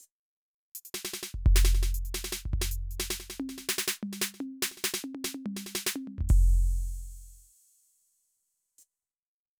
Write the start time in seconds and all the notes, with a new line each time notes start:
0.00 hi-hat pedal
0.75 closed hi-hat
0.94 snare
1.05 snare
1.13 snare
1.23 snare
1.34 kick
1.46 kick
1.56 snare
1.65 snare
1.74 snare
1.83 snare
1.94 closed hi-hat
2.05 closed hi-hat
2.14 snare
2.24 snare
2.32 snare
2.45 kick
2.53 kick
2.61 snare
2.71 closed hi-hat
2.91 closed hi-hat
3.00 snare
3.10 snare
3.20 snare
3.30 snare
3.40 high tom
3.49 snare
3.58 snare
3.69 snare
3.78 snare
3.88 snare
4.03 mid tom
4.12 snare
4.21 snare
4.34 snare
4.40 high tom
4.62 snare, hi-hat pedal
4.71 snare
4.77 snare
4.84 snare
4.94 snare
5.04 high tom
5.15 high tom
5.24 snare
5.34 high tom
5.46 mid tom
5.56 snare
5.66 snare
5.75 snare
5.86 snare
5.96 high tom
6.07 mid tom
6.18 kick, floor tom
6.29 kick, crash
6.51 crash
8.78 hi-hat pedal
9.25 closed hi-hat